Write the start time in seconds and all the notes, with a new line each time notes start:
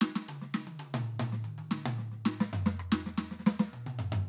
0.02 snare
0.16 snare
0.29 high tom
0.42 snare
0.55 snare
0.68 high tom
0.80 high tom
0.95 mid tom
1.20 mid tom
1.33 snare
1.45 high tom
1.58 high tom
1.71 snare
1.86 mid tom
1.99 snare
2.12 snare
2.26 snare
2.41 snare
2.53 floor tom
2.67 snare
2.80 cross-stick
2.92 snare
3.07 snare
3.18 snare
3.32 snare
3.40 snare
3.47 snare
3.60 snare
3.74 mid tom
3.87 mid tom
3.99 floor tom
4.13 floor tom